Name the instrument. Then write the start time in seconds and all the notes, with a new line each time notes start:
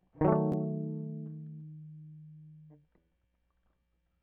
electric guitar
0.22 D#3 F#3
0.29 A3
0.33 D4